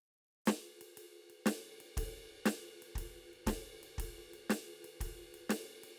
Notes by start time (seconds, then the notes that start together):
0.46 snare, hi-hat pedal, ride
0.81 ride
0.97 ride
1.30 ride
1.46 snare, hi-hat pedal, ride
1.80 ride
1.97 kick, ride
2.46 snare, hi-hat pedal, ride
2.82 ride
2.95 kick, ride
3.33 ride
3.46 kick, snare, hi-hat pedal, ride
3.83 ride
3.98 kick, ride
4.34 ride
4.50 snare, hi-hat pedal, ride
4.84 ride
5.00 kick, ride
5.34 ride
5.49 snare, hi-hat pedal, ride
5.84 ride